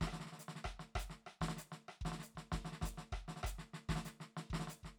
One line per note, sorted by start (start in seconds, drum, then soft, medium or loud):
0.01 kick soft
0.01 snare medium
0.07 cross-stick medium
0.13 snare soft
0.20 snare soft
0.26 snare soft
0.32 snare soft
0.39 snare soft
0.39 hi-hat pedal medium
0.48 snare soft
0.55 snare soft
0.64 kick soft
0.64 cross-stick medium
0.79 snare soft
0.95 kick soft
0.95 cross-stick medium
0.99 hi-hat pedal medium
1.10 snare soft
1.26 cross-stick soft
1.41 kick soft
1.41 snare medium
1.48 snare medium
1.57 snare soft
1.57 hi-hat pedal medium
1.72 snare soft
1.88 cross-stick soft
2.01 kick soft
2.01 snare medium
2.12 snare soft
2.19 snare soft
2.19 hi-hat pedal soft
2.35 kick soft
2.35 snare soft
2.52 kick soft
2.52 snare medium
2.58 kick soft
2.65 snare soft
2.72 snare soft
2.81 kick soft
2.81 snare soft
2.85 hi-hat pedal medium
2.98 snare soft
3.12 kick soft
3.12 cross-stick medium
3.28 snare soft
3.36 snare soft
3.43 kick soft
3.43 cross-stick medium
3.43 hi-hat pedal medium
3.58 snare soft
3.74 snare soft
3.89 kick soft
3.89 snare medium
3.95 kick soft
3.95 snare medium
4.05 snare soft
4.05 hi-hat pedal medium
4.20 snare soft
4.37 snare soft
4.50 kick soft
4.50 snare medium
4.60 snare soft
4.67 snare soft
4.67 hi-hat pedal medium
4.83 kick soft
4.83 snare soft